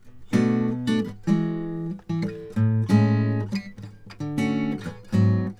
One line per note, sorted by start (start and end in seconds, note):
0.33 1.04 B2
0.33 0.79 A3
0.33 0.73 D4
0.33 0.74 F#4
0.88 1.04 A3
0.88 1.04 D4
0.88 1.02 F#4
1.28 1.96 E3
1.28 1.88 G#3
1.28 1.67 F#4
2.10 2.28 E3
2.58 2.86 A2
2.89 3.46 A2
2.89 3.46 G#3
2.89 3.45 C#4
2.89 3.37 E4
4.21 4.81 D3
4.38 4.82 A3
4.38 4.80 C#4
4.38 4.84 F#4
4.87 5.00 E2
5.13 5.53 G#2
5.13 5.51 F#3
5.13 5.53 B3